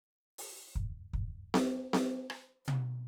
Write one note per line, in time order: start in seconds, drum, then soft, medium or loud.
0.38 open hi-hat loud
0.73 kick medium
0.73 hi-hat pedal soft
1.13 kick medium
1.13 ride soft
1.54 snare loud
1.93 snare medium
2.30 cross-stick medium
2.65 hi-hat pedal soft
2.65 high tom loud